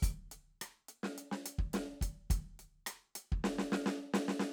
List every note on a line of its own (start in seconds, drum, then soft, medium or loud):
0.03 kick medium
0.03 hi-hat pedal loud
0.03 open hi-hat loud
0.32 closed hi-hat medium
0.61 cross-stick medium
0.61 closed hi-hat loud
0.89 closed hi-hat medium
1.03 snare medium
1.18 closed hi-hat medium
1.32 snare medium
1.46 closed hi-hat loud
1.59 kick medium
1.73 snare loud
1.73 closed hi-hat medium
2.01 kick medium
2.01 closed hi-hat loud
2.30 kick medium
2.30 closed hi-hat loud
2.59 open hi-hat medium
2.87 cross-stick medium
2.87 closed hi-hat loud
3.15 closed hi-hat loud
3.32 kick medium
3.44 snare loud
3.59 snare medium
3.72 snare loud
3.86 snare loud
4.14 snare loud
4.28 snare medium
4.40 snare medium